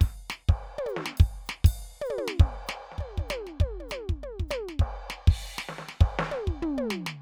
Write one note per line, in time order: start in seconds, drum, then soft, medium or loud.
0.01 kick loud
0.01 ride medium
0.30 snare loud
0.30 hi-hat pedal medium
0.48 kick loud
0.48 crash medium
0.78 high tom loud
0.86 hi-hat pedal medium
0.86 high tom loud
0.97 snare medium
1.06 snare loud
1.17 kick loud
1.17 ride medium
1.46 snare loud
1.46 hi-hat pedal medium
1.64 kick loud
1.64 ride loud
2.01 high tom loud
2.06 hi-hat pedal medium
2.10 high tom loud
2.18 high tom loud
2.28 snare loud
2.40 kick loud
2.40 crash medium
2.67 snare loud
2.67 hi-hat pedal medium
2.67 crash medium
2.92 snare soft
2.98 kick medium
2.98 high tom medium
3.18 kick medium
3.18 high tom medium
3.28 snare loud
3.28 hi-hat pedal medium
3.28 high tom loud
3.47 snare soft
3.60 kick loud
3.60 high tom medium
3.80 high tom medium
3.89 snare loud
3.89 hi-hat pedal medium
3.89 high tom medium
4.09 kick medium
4.23 high tom medium
4.40 kick medium
4.48 snare loud
4.48 hi-hat pedal medium
4.48 high tom loud
4.69 snare medium
4.79 kick loud
4.79 crash medium
5.10 snare loud
5.27 kick loud
5.27 crash medium
5.58 snare loud
5.69 snare medium
5.79 snare medium
5.89 snare medium
6.00 kick loud
6.00 crash medium
6.19 snare loud
6.31 high tom loud
6.47 kick medium
6.62 floor tom loud
6.78 high tom loud
6.90 snare loud
7.07 snare loud